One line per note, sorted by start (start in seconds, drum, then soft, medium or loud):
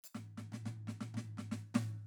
0.04 percussion medium
0.15 snare soft
0.15 floor tom soft
0.38 snare soft
0.38 floor tom soft
0.53 snare soft
0.53 floor tom medium
0.66 snare soft
0.66 floor tom medium
0.88 snare soft
0.88 floor tom soft
1.01 snare soft
1.01 floor tom medium
1.15 snare soft
1.15 floor tom medium
1.38 snare soft
1.38 floor tom soft
1.52 snare medium
1.52 floor tom soft
1.75 snare medium
1.75 floor tom medium